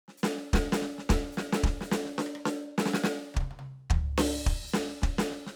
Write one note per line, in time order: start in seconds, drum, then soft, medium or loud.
0.08 snare soft
0.17 hi-hat pedal medium
0.23 snare loud
0.37 snare soft
0.53 kick loud
0.53 snare loud
0.72 snare loud
0.72 hi-hat pedal medium
0.82 snare medium
0.98 snare medium
1.09 kick loud
1.09 snare loud
1.25 snare soft
1.32 hi-hat pedal medium
1.37 snare loud
1.53 snare loud
1.64 kick loud
1.64 snare medium
1.81 snare medium
1.81 hi-hat pedal medium
1.92 snare loud
2.05 snare soft
2.18 snare medium
2.26 cross-stick medium
2.35 cross-stick medium
2.46 snare loud
2.78 snare loud
2.86 snare loud
2.94 snare loud
3.04 snare loud
3.34 kick loud
3.34 high tom medium
3.41 high tom medium
3.51 high tom medium
3.59 high tom medium
3.90 kick loud
3.90 floor tom loud
4.18 snare loud
4.18 crash loud
4.46 kick loud
4.63 snare soft
4.68 hi-hat pedal medium
4.74 snare loud
4.89 snare soft
5.02 kick loud
5.02 snare medium
5.18 snare loud
5.18 hi-hat pedal medium
5.30 snare soft
5.46 snare medium